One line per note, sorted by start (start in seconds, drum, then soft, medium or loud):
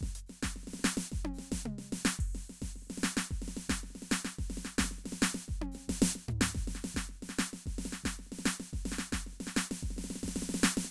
0.01 kick soft
0.01 snare soft
0.07 kick soft
0.15 open hi-hat medium
0.26 snare soft
0.26 hi-hat pedal soft
0.43 kick soft
0.43 snare medium
0.56 snare soft
0.63 snare soft
0.67 snare soft
0.74 snare soft
0.79 snare soft
0.79 hi-hat pedal medium
0.84 snare loud
0.97 snare medium
1.12 kick soft
1.12 snare soft
1.20 kick soft
1.25 high tom loud
1.34 hi-hat pedal medium
1.39 snare soft
1.52 kick soft
1.52 snare medium
1.65 mid tom loud
1.78 snare soft
1.91 snare medium
1.91 hi-hat pedal soft
2.05 snare loud
2.19 kick soft
2.19 crash medium
2.31 kick soft
2.31 snare soft
2.44 hi-hat pedal medium
2.50 snare soft
2.62 kick soft
2.62 snare soft
2.76 snare soft
2.82 snare soft
2.87 snare soft
2.90 snare soft
2.98 snare soft
3.02 snare medium
3.02 hi-hat pedal medium
3.17 snare medium
3.31 kick soft
3.31 snare soft
3.38 kick soft
3.38 snare soft
3.48 snare soft
3.55 snare medium
3.55 hi-hat pedal soft
3.69 kick soft
3.69 snare medium
3.83 snare soft
3.90 snare soft
3.95 snare soft
4.02 snare soft
4.09 snare loud
4.09 hi-hat pedal medium
4.25 snare medium
4.39 kick soft
4.39 snare soft
4.50 snare soft
4.57 snare soft
4.63 snare medium
4.63 hi-hat pedal medium
4.78 kick soft
4.78 snare loud
4.84 snare soft
4.91 snare soft
4.98 snare soft
5.04 snare soft
5.12 snare medium
5.20 snare loud
5.20 hi-hat pedal soft
5.34 snare medium
5.48 kick soft
5.48 snare soft
5.56 kick soft
5.62 high tom medium
5.72 snare soft
5.72 hi-hat pedal medium
5.88 kick soft
5.88 snare medium
6.02 snare loud
6.15 snare soft
6.28 hi-hat pedal soft
6.28 floor tom loud
6.41 snare loud
6.55 kick soft
6.55 snare soft
6.62 kick soft
6.67 snare soft
6.75 snare soft
6.81 snare medium
6.81 hi-hat pedal medium
6.95 kick soft
6.95 snare medium
7.09 snare soft
7.15 snare soft
7.21 snare soft
7.29 snare soft
7.37 snare medium
7.37 hi-hat pedal medium
7.53 snare soft
7.66 kick soft
7.66 snare soft
7.78 snare medium
7.85 snare medium
7.91 snare medium
7.91 hi-hat pedal soft
8.04 kick soft
8.04 snare medium
8.19 snare soft
8.26 snare soft
8.32 snare soft
8.39 snare soft
8.45 snare loud
8.45 hi-hat pedal soft
8.60 snare soft
8.73 kick soft
8.73 snare soft
8.85 snare medium
8.92 snare medium
8.97 snare medium
8.97 hi-hat pedal soft
9.12 kick soft
9.12 snare medium
9.26 snare soft
9.33 snare soft
9.37 snare soft
9.40 snare soft
9.47 snare medium
9.54 snare loud
9.54 hi-hat pedal soft
9.71 snare medium
9.83 kick soft
9.83 snare soft
9.90 snare soft
9.96 snare soft
9.98 snare soft
10.04 snare soft
10.04 hi-hat pedal soft
10.10 snare medium
10.16 snare soft
10.23 kick soft
10.23 snare medium
10.28 snare medium
10.36 snare medium
10.42 snare medium
10.49 snare medium
10.54 snare medium
10.60 snare soft
10.63 snare loud
10.63 hi-hat pedal medium
10.77 snare medium
10.85 snare soft